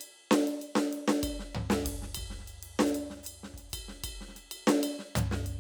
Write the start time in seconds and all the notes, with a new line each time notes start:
0.01 ride bell
0.31 snare
0.39 hi-hat pedal
0.47 ride
0.62 ride bell
0.76 snare
0.90 hi-hat pedal, ride
1.08 snare
1.23 kick, ride bell
1.29 kick
1.39 snare
1.55 floor tom
1.70 snare
1.85 kick, hi-hat pedal, ride
1.92 kick
2.02 snare
2.15 kick, ride bell
2.30 snare
2.39 snare
2.48 ride bell
2.63 ride
2.79 snare
2.86 hi-hat pedal
2.95 ride bell
3.10 snare
3.17 snare
3.23 hi-hat pedal, ride bell
3.43 snare
3.54 kick, snare
3.58 ride bell
3.70 kick, hi-hat pedal, ride bell
3.88 snare
4.04 kick, ride bell
4.21 snare
4.29 snare
4.35 snare, ride bell
4.51 ride bell
4.67 snare
4.83 ride bell
4.99 snare
5.16 hi-hat pedal, floor tom
5.31 snare
5.44 kick, ride bell